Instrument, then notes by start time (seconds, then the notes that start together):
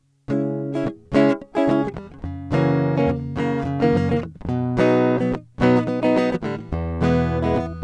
acoustic guitar
0.29 C#3 G#3 C#4 E4
0.75 C#4 E4 G#4
1.13 C#3 G#3
1.17 C#4 E4
1.56 C#4 E4 G#4
1.69 C#3 G#3 C#4 E4
1.83 C#4
2.25 F2 C#3
2.52 F#2 C#3 E3 A#3
2.56 C#4
2.68 F#4
2.96 C#4 F#4
3.00 E3 A#3
3.08 F2 C#3
3.37 F#2 C#3 E3
3.41 A#3
3.61 F#2 C#3
3.81 A#3 C#4
3.85 E3
3.94 F#2 C#3 E3
3.98 A#3
4.11 E3 A#3 C#4
4.21 E2 D#3
4.46 F2 B2
4.78 B2 F#3 B3 D#4
4.82 G#4
5.22 F#3 B3
5.37 D#4
5.59 F#2 B2 F#3
5.64 B3 D#4
5.88 F#3 B3
6.01 D#4 G#4
6.06 F#3 B3
6.18 F#3 B3 D#4
6.32 B3
6.36 F#3
6.44 A2 D3 G3
6.74 E2
7.02 B2 E3 G#3 B3 E4
7.43 G#3 B3 E4
7.61 B3